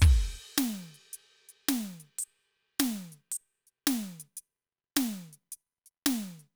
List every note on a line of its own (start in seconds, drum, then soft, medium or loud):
0.01 kick loud
0.01 hi-hat pedal loud
0.01 crash medium
0.58 snare loud
0.58 closed hi-hat loud
0.94 closed hi-hat soft
1.13 closed hi-hat loud
1.49 closed hi-hat medium
1.68 snare loud
1.68 closed hi-hat loud
2.00 closed hi-hat medium
2.18 closed hi-hat loud
2.79 snare loud
2.79 closed hi-hat loud
3.12 closed hi-hat medium
3.31 closed hi-hat loud
3.67 closed hi-hat soft
3.87 snare loud
3.87 closed hi-hat loud
4.20 closed hi-hat loud
4.37 closed hi-hat loud
4.96 snare loud
4.96 closed hi-hat loud
5.33 closed hi-hat medium
5.52 closed hi-hat loud
5.86 closed hi-hat soft
6.06 snare loud
6.06 closed hi-hat loud
6.39 closed hi-hat soft